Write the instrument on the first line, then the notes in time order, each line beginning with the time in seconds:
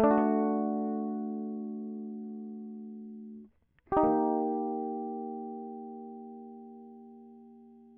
electric guitar
0.00 A3 D4
0.10 F#4
3.92 G4
3.96 D#4
4.04 A#3